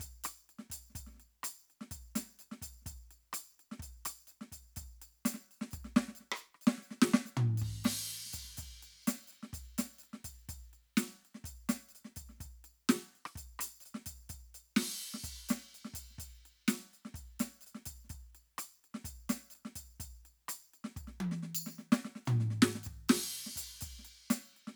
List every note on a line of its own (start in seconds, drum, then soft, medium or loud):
0.01 kick soft
0.01 percussion medium
0.25 cross-stick medium
0.25 percussion loud
0.50 percussion soft
0.60 snare soft
0.71 kick soft
0.71 percussion medium
0.91 snare soft
0.96 kick soft
0.96 percussion medium
1.08 snare soft
1.12 snare soft
1.16 snare soft
1.19 snare soft
1.19 percussion soft
1.44 cross-stick medium
1.44 percussion loud
1.71 percussion soft
1.82 snare soft
1.92 kick soft
1.92 percussion medium
2.17 snare medium
2.17 percussion loud
2.40 percussion medium
2.42 percussion soft
2.53 snare soft
2.63 kick soft
2.63 percussion medium
2.83 snare soft
2.87 kick soft
2.87 percussion medium
2.93 kick soft
3.12 percussion soft
3.34 cross-stick medium
3.34 percussion loud
3.61 percussion soft
3.73 snare soft
3.81 kick soft
3.81 percussion medium
4.06 cross-stick medium
4.06 percussion loud
4.28 percussion soft
4.33 percussion soft
4.42 snare soft
4.53 kick soft
4.53 percussion medium
4.77 kick soft
4.77 percussion medium
4.84 kick soft
5.03 percussion medium
5.26 snare medium
5.26 percussion loud
5.35 snare soft
5.52 percussion soft
5.62 snare medium
5.72 kick soft
5.72 percussion soft
5.74 percussion medium
5.82 kick soft
5.82 snare soft
5.97 snare loud
6.09 snare soft
6.16 percussion medium
6.21 snare soft
6.33 high tom loud
6.37 percussion medium
6.56 cross-stick soft
6.62 percussion soft
6.68 snare loud
6.79 snare soft
6.83 percussion soft
6.92 snare soft
7.03 snare loud
7.03 percussion soft
7.15 snare loud
7.26 snare soft
7.26 percussion soft
7.38 floor tom loud
7.59 percussion medium
7.63 kick soft
7.63 crash medium
7.85 snare loud
7.85 crash loud
8.12 percussion soft
8.27 snare soft
8.34 kick soft
8.34 percussion medium
8.45 snare soft
8.58 kick soft
8.58 percussion medium
8.65 kick soft
8.84 percussion medium
9.03 percussion soft
9.08 snare medium
9.08 percussion loud
9.29 percussion soft
9.34 percussion soft
9.44 snare soft
9.54 kick soft
9.54 percussion medium
9.79 snare medium
9.79 percussion loud
10.00 percussion soft
10.05 percussion soft
10.14 snare soft
10.25 kick soft
10.25 percussion medium
10.50 kick soft
10.50 percussion medium
10.74 percussion soft
10.98 snare loud
10.98 percussion loud
11.26 percussion soft
11.36 snare soft
11.45 kick soft
11.45 percussion medium
11.70 snare medium
11.70 percussion loud
11.90 percussion soft
11.96 percussion soft
12.06 snare soft
12.17 kick soft
12.17 percussion medium
12.30 snare soft
12.35 snare soft
12.38 kick soft
12.38 snare soft
12.38 percussion medium
12.47 kick soft
12.65 percussion soft
12.90 snare loud
12.90 percussion medium
13.07 percussion soft
13.16 percussion soft
13.26 cross-stick medium
13.37 kick soft
13.37 percussion medium
13.60 cross-stick medium
13.60 percussion loud
13.82 percussion medium
13.87 percussion soft
13.96 snare medium
14.07 kick soft
14.07 percussion medium
14.30 kick soft
14.30 percussion medium
14.56 percussion medium
14.77 snare loud
14.77 crash loud
15.00 percussion soft
15.03 percussion soft
15.15 snare soft
15.24 kick soft
15.24 snare soft
15.24 percussion medium
15.50 snare medium
15.50 percussion loud
15.75 percussion soft
15.86 snare soft
15.95 kick soft
15.95 percussion medium
16.11 snare soft
16.20 kick soft
16.20 percussion medium
16.47 percussion soft
16.69 snare medium
16.69 percussion loud
16.95 percussion soft
17.06 snare soft
17.15 kick soft
17.15 percussion medium
17.41 snare medium
17.41 percussion loud
17.62 percussion soft
17.68 percussion soft
17.76 snare soft
17.87 kick soft
17.87 percussion medium
18.05 snare soft
18.11 kick soft
18.11 percussion medium
18.36 percussion soft
18.59 cross-stick medium
18.59 percussion loud
18.85 percussion soft
18.95 snare medium
19.06 kick soft
19.06 percussion medium
19.30 snare medium
19.30 percussion loud
19.51 percussion medium
19.56 percussion soft
19.66 snare soft
19.77 kick soft
19.77 percussion medium
20.01 kick soft
20.01 percussion medium
20.26 percussion soft
20.50 cross-stick medium
20.50 percussion loud
20.75 percussion soft
20.85 snare medium
20.98 kick soft
20.98 percussion medium
21.05 kick soft
21.05 snare soft
21.19 kick soft
21.19 high tom loud
21.33 snare soft
21.44 snare soft
21.56 percussion loud
21.56 percussion medium
21.67 snare soft
21.79 snare soft
21.93 snare loud
21.93 percussion medium
22.06 snare soft
22.16 snare soft
22.27 floor tom loud
22.27 percussion soft
22.41 snare soft
22.52 snare soft
22.63 snare loud
22.76 snare soft
22.84 kick soft
22.84 percussion medium
22.93 kick soft
23.10 snare loud
23.10 crash loud
23.36 percussion soft
23.47 snare soft
23.57 kick soft
23.57 percussion loud
23.82 kick soft
23.82 percussion medium
24.00 snare soft
24.06 percussion medium
24.31 snare loud
24.31 percussion loud
24.58 percussion soft
24.68 snare soft